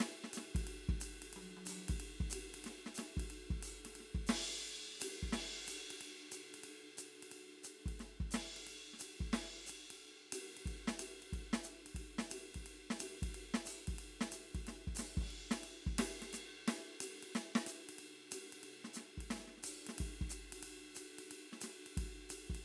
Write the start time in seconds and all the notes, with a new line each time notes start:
0.01 snare, ride
0.25 snare
0.34 snare, hi-hat pedal, ride
0.56 kick, ride
0.68 ride
0.90 kick
1.01 hi-hat pedal, ride
1.23 hi-hat pedal, ride
1.34 high tom, ride
1.42 hi-hat pedal
1.57 high tom
1.66 hi-hat pedal, high tom, ride
1.89 kick, ride
2.01 ride
2.21 kick
2.31 hi-hat pedal, ride
2.55 ride
2.65 snare, ride
2.87 snare
2.95 hi-hat pedal, ride
2.99 snare
3.18 kick, ride
3.31 ride
3.51 kick
3.63 hi-hat pedal, ride
3.86 snare, ride
3.96 ride
4.01 snare
4.15 kick
4.27 snare, hi-hat pedal, ride
5.01 hi-hat pedal, ride
5.23 kick
5.33 snare, ride
5.67 hi-hat pedal, ride
5.91 ride
6.02 ride
6.32 hi-hat pedal, ride
6.55 ride
6.64 ride
6.98 hi-hat pedal, ride
7.23 ride
7.32 ride
7.64 hi-hat pedal, ride
7.87 kick, ride
8.00 snare, ride
8.21 kick
8.32 snare, hi-hat pedal, ride
8.57 ride
8.67 ride
8.94 snare
9.00 hi-hat pedal, ride
9.21 kick
9.34 snare, ride
9.67 hi-hat pedal, ride
9.91 ride
10.33 hi-hat pedal, ride
10.58 ride
10.66 kick, ride
10.88 snare
11.00 hi-hat pedal, ride
11.23 ride
11.33 kick, ride
11.54 snare
11.64 hi-hat pedal, ride
11.87 ride
11.95 kick, ride
12.19 snare
12.31 hi-hat pedal, ride
12.55 kick, ride
12.67 ride
12.91 snare
13.00 hi-hat pedal, ride
13.23 kick, ride
13.35 ride
13.55 snare
13.66 hi-hat pedal, ride
13.88 kick, ride
13.99 ride
14.21 snare
14.32 hi-hat pedal, ride
14.55 kick, ride
14.68 snare, ride
14.88 kick
14.96 snare, hi-hat pedal, ride
15.18 kick, ride
15.31 ride
15.52 snare, ride
15.64 ride
15.87 kick
15.99 snare, ride
16.22 snare, ride
16.34 snare, hi-hat pedal, ride
16.68 snare, ride
17.01 hi-hat pedal, ride
17.23 ride
17.36 snare, ride
17.56 snare
17.67 hi-hat pedal, ride
17.90 ride
17.99 ride
18.19 snare
18.32 hi-hat pedal, ride
18.53 ride
18.64 ride
18.85 snare
18.94 snare, hi-hat pedal, ride
19.18 kick, ride
19.31 snare, ride
19.36 snare
19.40 snare
19.48 snare
19.58 snare
19.64 hi-hat pedal, ride
19.87 snare, ride
19.99 kick, ride
20.22 kick
20.30 hi-hat pedal, ride
20.53 ride
20.64 ride
20.95 hi-hat pedal, ride
21.19 ride
21.32 ride
21.53 snare
21.61 snare, hi-hat pedal, ride
21.87 ride
21.98 kick, ride
22.30 hi-hat pedal, ride
22.51 kick
22.56 ride